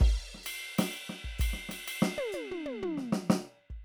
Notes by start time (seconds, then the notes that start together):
0.01 kick, crash
0.35 snare
0.44 hi-hat pedal, ride
0.79 snare, ride
0.94 ride
1.10 snare
1.25 kick
1.39 kick, hi-hat pedal, ride
1.54 snare
1.69 snare, ride
1.88 ride
2.02 snare
2.18 high tom
2.33 hi-hat pedal, high tom
2.51 floor tom
2.66 high tom
2.83 floor tom
2.98 snare
3.13 snare
3.30 snare
3.70 kick